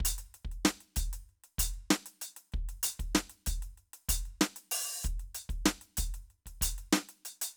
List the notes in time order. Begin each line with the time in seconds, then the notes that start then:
0.01 closed hi-hat, kick
0.18 closed hi-hat
0.34 closed hi-hat
0.45 kick
0.51 closed hi-hat
0.65 snare
0.80 closed hi-hat
0.96 closed hi-hat, kick
1.13 closed hi-hat
1.29 closed hi-hat
1.44 closed hi-hat
1.58 closed hi-hat, kick
1.74 closed hi-hat
1.90 snare
2.06 closed hi-hat
2.21 closed hi-hat
2.36 closed hi-hat
2.52 kick, closed hi-hat
2.69 closed hi-hat
2.83 closed hi-hat
2.99 kick, closed hi-hat
3.15 snare
3.29 closed hi-hat
3.46 closed hi-hat, kick
3.62 closed hi-hat
3.77 closed hi-hat
3.93 closed hi-hat
4.09 closed hi-hat, kick
4.25 closed hi-hat
4.41 snare
4.56 closed hi-hat
4.71 open hi-hat
5.03 open hi-hat, kick, hi-hat pedal
5.19 closed hi-hat
5.34 closed hi-hat
5.49 kick, closed hi-hat
5.66 snare
5.81 closed hi-hat
5.97 closed hi-hat, kick
6.14 closed hi-hat
6.30 closed hi-hat
6.46 kick, closed hi-hat
6.61 closed hi-hat, kick
6.78 closed hi-hat
6.93 snare
6.97 snare
7.09 closed hi-hat
7.25 closed hi-hat
7.41 closed hi-hat